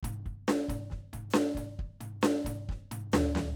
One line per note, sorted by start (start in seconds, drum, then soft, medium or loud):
0.03 kick medium
0.03 mid tom loud
0.25 kick soft
0.25 mid tom soft
0.47 snare loud
0.47 hi-hat pedal medium
0.68 kick medium
0.68 mid tom medium
0.90 kick soft
0.90 snare soft
1.13 kick soft
1.13 mid tom medium
1.30 snare loud
1.30 hi-hat pedal medium
1.55 kick soft
1.55 mid tom medium
1.79 kick medium
2.00 mid tom medium
2.21 snare loud
2.21 hi-hat pedal medium
2.44 kick soft
2.44 mid tom medium
2.69 kick medium
2.69 snare soft
2.91 mid tom medium
3.12 snare loud
3.12 floor tom loud
3.12 hi-hat pedal medium
3.35 snare loud
3.35 floor tom loud